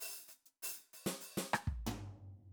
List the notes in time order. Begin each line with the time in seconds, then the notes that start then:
0.00 open hi-hat
0.28 closed hi-hat, hi-hat pedal
0.46 closed hi-hat
0.62 open hi-hat
0.93 hi-hat pedal
1.06 snare
1.21 hi-hat pedal
1.37 snare
1.53 cross-stick
1.67 kick
1.86 floor tom